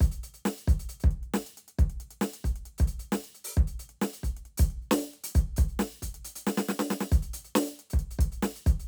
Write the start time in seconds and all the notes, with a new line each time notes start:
0.01 closed hi-hat, kick
0.12 closed hi-hat
0.24 closed hi-hat
0.34 closed hi-hat
0.46 snare
0.58 closed hi-hat
0.68 closed hi-hat, kick
0.80 closed hi-hat
0.89 closed hi-hat
1.00 closed hi-hat, kick
1.11 closed hi-hat
1.23 closed hi-hat
1.34 snare
1.47 closed hi-hat
1.58 closed hi-hat
1.68 closed hi-hat
1.79 kick, closed hi-hat
1.90 closed hi-hat
2.00 closed hi-hat
2.11 closed hi-hat
2.22 snare
2.34 closed hi-hat
2.45 closed hi-hat, kick
2.56 closed hi-hat
2.66 closed hi-hat
2.78 closed hi-hat, kick
2.88 closed hi-hat
3.00 closed hi-hat
3.12 snare
3.24 closed hi-hat
3.35 closed hi-hat
3.45 open hi-hat
3.57 kick, closed hi-hat
3.68 closed hi-hat
3.80 closed hi-hat
3.90 closed hi-hat
4.02 snare
4.14 closed hi-hat
4.24 closed hi-hat, kick
4.37 closed hi-hat
4.46 closed hi-hat
4.58 closed hi-hat, kick
4.71 closed hi-hat
4.82 closed hi-hat
4.91 snare
5.14 closed hi-hat
5.24 closed hi-hat
5.35 closed hi-hat, kick
5.47 closed hi-hat
5.57 closed hi-hat, kick
5.69 closed hi-hat
5.80 snare
5.93 closed hi-hat
6.03 closed hi-hat, kick
6.15 closed hi-hat
6.25 closed hi-hat
6.36 closed hi-hat
6.47 snare
6.58 snare
6.69 snare
6.80 snare
6.91 snare
7.01 snare
7.12 closed hi-hat, kick
7.23 closed hi-hat
7.34 closed hi-hat
7.45 closed hi-hat
7.56 snare
7.67 closed hi-hat
7.79 closed hi-hat
7.90 closed hi-hat, kick
7.99 closed hi-hat
8.11 closed hi-hat
8.19 kick, closed hi-hat
8.32 closed hi-hat
8.43 snare
8.56 closed hi-hat
8.67 closed hi-hat, kick
8.80 closed hi-hat